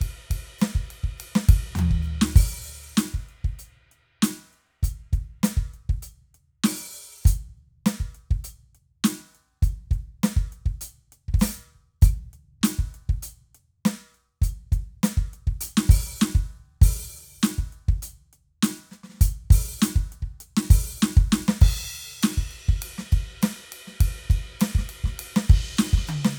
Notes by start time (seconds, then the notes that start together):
0.01 kick, ride
0.31 kick, ride
0.59 snare, hi-hat pedal, ride
0.75 kick
0.91 ride
1.04 kick
1.18 hi-hat pedal, ride
1.36 snare
1.49 kick, ride
1.75 floor tom, hi-hat pedal, high tom
1.91 kick
2.03 hi-hat pedal
2.22 snare
2.36 open hi-hat, kick
2.92 kick
2.97 closed hi-hat, snare, hi-hat pedal
3.14 kick
3.29 closed hi-hat
3.45 kick
3.59 closed hi-hat
3.92 closed hi-hat
4.23 closed hi-hat, snare
4.53 closed hi-hat
4.83 closed hi-hat, kick
5.13 kick, closed hi-hat
5.44 closed hi-hat, snare
5.57 kick
5.74 closed hi-hat
5.89 kick
6.03 closed hi-hat
6.35 closed hi-hat
6.64 open hi-hat, snare
7.24 closed hi-hat, kick, hi-hat pedal
7.58 closed hi-hat
7.86 closed hi-hat, snare
8.00 kick
8.15 closed hi-hat
8.31 kick
8.44 closed hi-hat
8.75 closed hi-hat
9.04 closed hi-hat, snare
9.35 closed hi-hat
9.63 closed hi-hat, kick
9.91 kick, closed hi-hat
10.24 closed hi-hat, snare
10.37 kick
10.53 closed hi-hat
10.66 kick, crash
10.81 closed hi-hat
11.12 closed hi-hat
11.28 kick
11.34 kick
11.39 open hi-hat, snare, hi-hat pedal
11.75 kick
12.02 open hi-hat, kick, hi-hat pedal
12.33 closed hi-hat
12.61 closed hi-hat, kick, snare
12.79 kick
12.94 closed hi-hat
13.09 kick
13.23 closed hi-hat
13.55 closed hi-hat
13.86 closed hi-hat, snare
14.15 closed hi-hat
14.42 closed hi-hat, kick
14.72 kick, closed hi-hat
15.04 closed hi-hat, snare
15.17 kick
15.34 closed hi-hat
15.47 kick
15.61 closed hi-hat
15.77 snare
15.89 open hi-hat, kick
16.20 snare, hi-hat pedal
16.35 kick
16.82 open hi-hat, kick
17.37 kick
17.42 closed hi-hat, snare, hi-hat pedal
17.58 kick
17.73 closed hi-hat
17.89 kick
18.03 closed hi-hat
18.33 closed hi-hat
18.63 closed hi-hat, snare
18.92 snare, closed hi-hat
19.04 snare
19.09 snare
19.17 closed hi-hat, kick, snare
19.51 open hi-hat, kick
19.80 closed hi-hat, snare, hi-hat pedal
19.96 kick
20.12 closed hi-hat
20.22 kick
20.41 closed hi-hat
20.57 snare
20.71 open hi-hat, kick
21.02 snare, hi-hat pedal
21.17 kick
21.29 snare, hi-hat pedal
21.48 snare
21.61 kick, crash
21.88 hi-hat pedal
22.21 snare, hi-hat pedal, ride
22.38 kick
22.51 hi-hat pedal, ride
22.69 kick
22.81 hi-hat pedal, ride
22.98 snare
23.12 kick, ride bell
23.42 snare, hi-hat pedal, ride
23.72 ride
23.87 snare
23.92 snare
24.00 kick, hi-hat pedal, ride
24.30 kick, ride bell
24.60 snare, hi-hat pedal, ride
24.75 kick, snare
24.89 hi-hat pedal, ride
25.04 kick, snare
25.19 hi-hat pedal, ride
25.36 snare
25.50 kick, ride
25.77 snare, hi-hat pedal, ride
25.93 kick
25.98 snare
26.07 hi-hat pedal, mid tom
26.25 snare